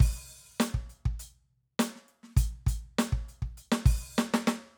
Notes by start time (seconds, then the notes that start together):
0.01 open hi-hat, kick
0.50 kick
0.60 closed hi-hat, snare, hi-hat pedal
0.75 kick
0.90 closed hi-hat
1.06 kick
1.20 closed hi-hat
1.80 closed hi-hat, snare
1.96 snare
2.09 closed hi-hat
2.24 snare
2.28 snare
2.31 snare
2.37 closed hi-hat, kick
2.67 closed hi-hat, kick
2.99 closed hi-hat, snare
3.13 kick
3.29 closed hi-hat
3.43 kick, crash
3.47 ride
3.58 closed hi-hat
3.73 snare
3.86 open hi-hat, kick
4.19 snare, hi-hat pedal
4.34 snare
4.48 snare